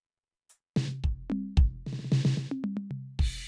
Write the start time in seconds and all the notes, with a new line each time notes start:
0.49 hi-hat pedal
0.76 snare, floor tom
1.04 kick
1.30 mid tom, high tom
1.57 kick, snare
1.87 snare
1.93 snare
1.99 snare
2.05 snare
2.10 snare
2.12 snare
2.25 snare
2.37 snare
2.51 high tom
2.64 mid tom
2.77 mid tom
2.91 floor tom
3.19 kick, crash